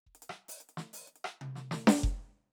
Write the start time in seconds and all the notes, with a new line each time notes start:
0.07 kick
0.15 closed hi-hat
0.22 closed hi-hat
0.29 cross-stick
0.48 hi-hat pedal
0.60 closed hi-hat
0.69 closed hi-hat
0.77 snare
0.93 hi-hat pedal
1.07 closed hi-hat
1.16 closed hi-hat
1.24 cross-stick
1.41 high tom
1.56 snare
1.71 snare
1.87 snare
2.03 kick